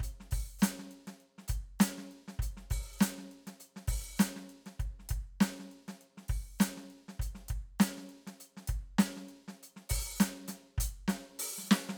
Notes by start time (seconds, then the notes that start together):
0.01 closed hi-hat, kick
0.21 snare
0.26 snare
0.32 open hi-hat, kick
0.60 snare, hi-hat pedal
0.64 closed hi-hat
0.80 snare
0.92 closed hi-hat
1.08 snare, closed hi-hat
1.21 closed hi-hat
1.39 snare
1.49 open hi-hat, kick
1.80 closed hi-hat, snare, hi-hat pedal
1.99 snare
2.12 closed hi-hat
2.29 snare
2.40 closed hi-hat, kick
2.58 snare
2.71 open hi-hat, kick
3.00 closed hi-hat, snare, hi-hat pedal
3.19 snare
3.32 closed hi-hat
3.48 snare, closed hi-hat
3.61 closed hi-hat
3.77 snare
3.89 open hi-hat, kick
4.19 closed hi-hat, snare, hi-hat pedal
4.37 snare
4.50 closed hi-hat
4.67 snare, closed hi-hat
4.80 kick, closed hi-hat
5.00 snare
5.10 kick, open hi-hat
5.41 closed hi-hat, snare, hi-hat pedal
5.60 snare
5.72 closed hi-hat
5.89 snare, closed hi-hat
6.02 closed hi-hat
6.18 snare
6.29 kick, open hi-hat
6.60 closed hi-hat, snare, hi-hat pedal
6.78 snare
6.91 closed hi-hat
7.09 snare, closed hi-hat
7.20 closed hi-hat, kick
7.36 snare
7.50 kick, open hi-hat
7.80 closed hi-hat, snare, hi-hat pedal
7.98 snare
8.10 closed hi-hat
8.28 snare, closed hi-hat
8.41 closed hi-hat
8.58 snare
8.69 kick, closed hi-hat
9.00 closed hi-hat, snare, hi-hat pedal
9.18 snare
9.30 closed hi-hat
9.49 snare, closed hi-hat
9.64 closed hi-hat
9.77 snare
9.90 open hi-hat, kick
10.19 closed hi-hat, snare, hi-hat pedal
10.49 closed hi-hat, snare
10.79 closed hi-hat, kick
11.09 closed hi-hat, snare
11.40 open hi-hat
11.59 snare
11.64 snare
11.68 snare, hi-hat pedal
11.72 snare
11.90 snare